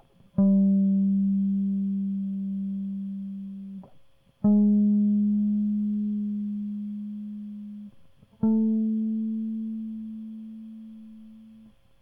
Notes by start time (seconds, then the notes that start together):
0.39 G3
4.45 G#3
8.44 A3